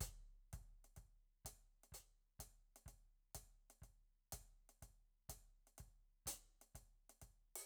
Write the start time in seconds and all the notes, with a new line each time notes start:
0.01 closed hi-hat, kick
0.53 kick, closed hi-hat
0.85 closed hi-hat
0.97 kick, closed hi-hat
1.45 kick, closed hi-hat
1.84 closed hi-hat
1.92 closed hi-hat, kick
2.40 kick, closed hi-hat
2.76 closed hi-hat
2.86 kick, closed hi-hat
3.35 kick, closed hi-hat
3.70 closed hi-hat
3.82 kick, closed hi-hat
4.33 kick, closed hi-hat
4.70 closed hi-hat
4.83 kick, closed hi-hat
5.29 kick, closed hi-hat
5.67 closed hi-hat
5.78 kick, closed hi-hat
6.26 closed hi-hat, kick
6.62 closed hi-hat
6.75 kick, closed hi-hat
7.10 closed hi-hat
7.22 kick, closed hi-hat
7.56 open hi-hat
7.62 hi-hat pedal